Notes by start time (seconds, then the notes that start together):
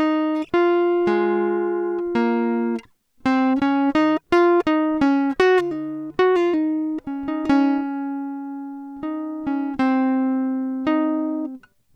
0.00 D#4
0.56 F4
1.09 G#3
2.17 A#3
3.27 C4
3.64 C#4
3.97 D#4
4.34 F4
4.69 D#4
5.03 C#4
5.41 F#4
5.60 F4
5.73 D#4
6.21 F#4
6.38 F4
6.56 D#4
7.09 C#4
7.30 D#4
7.47 D#4
7.52 C#4
9.05 D#4
9.49 C#4
9.81 C4
10.88 D#4